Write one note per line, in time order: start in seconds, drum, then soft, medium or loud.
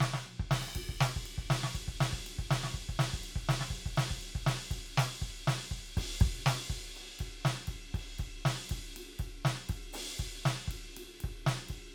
0.01 snare loud
0.14 snare medium
0.27 high tom soft
0.40 kick medium
0.52 snare loud
0.52 crash loud
0.62 snare medium
0.68 snare medium
0.76 kick medium
0.76 ride loud
0.90 kick medium
1.01 snare loud
1.01 ride medium
1.17 kick medium
1.26 ride medium
1.39 kick medium
1.51 snare loud
1.51 ride loud
1.64 snare medium
1.75 kick medium
1.75 ride medium
1.89 kick medium
2.01 snare loud
2.01 ride loud
2.13 kick medium
2.27 ride medium
2.39 kick medium
2.51 snare loud
2.51 ride loud
2.64 snare medium
2.75 kick medium
2.75 ride soft
2.90 kick medium
3.00 snare loud
3.00 ride loud
3.14 kick medium
3.24 ride medium
3.36 kick medium
3.50 snare loud
3.50 ride loud
3.61 snare medium
3.71 kick medium
3.71 ride soft
3.87 kick medium
3.98 snare loud
3.98 ride loud
4.11 kick medium
4.22 ride medium
4.36 kick medium
4.47 snare loud
4.47 ride loud
4.72 kick medium
4.72 ride medium
4.98 snare loud
4.98 ride loud
5.21 kick medium
5.21 ride medium
5.48 snare loud
5.48 ride loud
5.71 kick medium
5.71 ride soft
5.98 kick medium
5.98 ride loud
6.21 kick loud
6.21 ride medium
6.47 snare loud
6.47 ride loud
6.70 kick medium
6.70 ride soft
6.96 ride medium
7.20 kick medium
7.20 ride medium
7.46 snare loud
7.46 ride medium
7.68 kick medium
7.68 ride medium
7.95 kick medium
7.95 ride medium
8.19 kick medium
8.19 ride medium
8.46 snare loud
8.46 hi-hat pedal soft
8.46 ride loud
8.70 kick medium
8.70 ride medium
8.97 ride medium
9.20 kick medium
9.20 ride medium
9.44 snare loud
9.44 hi-hat pedal soft
9.44 ride medium
9.70 kick medium
9.70 ride medium
9.94 open hi-hat medium
9.94 ride loud
10.17 kick medium
10.17 hi-hat pedal soft
10.17 ride medium
10.46 snare loud
10.46 ride medium
10.68 kick medium
10.68 hi-hat pedal soft
10.68 ride medium
10.97 ride loud
11.05 kick soft
11.21 kick medium
11.21 ride medium
11.47 snare loud
11.47 ride medium
11.69 kick medium
11.69 ride medium